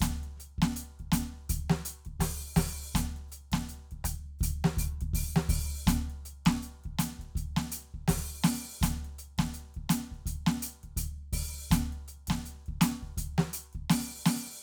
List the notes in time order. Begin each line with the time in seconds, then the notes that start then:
0.01 closed hi-hat, kick, snare, hi-hat pedal
0.24 closed hi-hat
0.37 closed hi-hat, snare
0.59 kick, snare
0.63 closed hi-hat
0.77 closed hi-hat
1.00 kick, closed hi-hat
1.12 closed hi-hat, kick, snare
1.50 closed hi-hat, kick
1.70 snare
1.86 closed hi-hat
2.06 kick, closed hi-hat
2.20 open hi-hat, kick, snare
2.57 open hi-hat, kick, snare
2.95 open hi-hat, kick, snare, hi-hat pedal
3.17 closed hi-hat
3.29 closed hi-hat, hi-hat pedal
3.52 kick, snare, closed hi-hat
3.69 closed hi-hat
3.92 kick, closed hi-hat
4.05 closed hi-hat, kick, cross-stick
4.39 kick, hi-hat pedal
4.44 closed hi-hat
4.65 snare
4.78 open hi-hat, kick
4.82 hi-hat pedal
5.01 kick, closed hi-hat
5.14 open hi-hat, kick
5.37 snare
5.50 open hi-hat, kick
5.88 open hi-hat, kick, snare, hi-hat pedal
6.10 closed hi-hat
6.25 closed hi-hat, kick
6.46 kick, snare, closed hi-hat
6.63 closed hi-hat
6.84 kick, closed hi-hat
6.99 closed hi-hat, snare
7.20 kick, closed hi-hat
7.36 closed hi-hat, kick
7.57 snare
7.72 closed hi-hat
7.92 kick, closed hi-hat
8.09 open hi-hat, kick, snare
8.44 open hi-hat, snare
8.82 closed hi-hat, kick, snare, hi-hat pedal
9.05 closed hi-hat
9.19 closed hi-hat
9.39 kick, snare, closed hi-hat
9.54 closed hi-hat
9.75 kick, closed hi-hat
9.90 closed hi-hat, snare
10.12 kick, closed hi-hat
10.27 closed hi-hat, kick
10.47 snare
10.63 closed hi-hat
10.84 kick, closed hi-hat
10.97 open hi-hat, kick
11.33 open hi-hat, kick
11.72 open hi-hat, kick, snare, hi-hat pedal
11.93 closed hi-hat
12.09 closed hi-hat
12.28 kick, snare, closed hi-hat
12.46 closed hi-hat
12.67 kick, closed hi-hat
12.82 closed hi-hat, snare
13.03 kick, closed hi-hat
13.18 closed hi-hat, kick
13.39 snare
13.54 closed hi-hat
13.73 kick, closed hi-hat
13.90 open hi-hat, snare
14.20 kick
14.26 open hi-hat, snare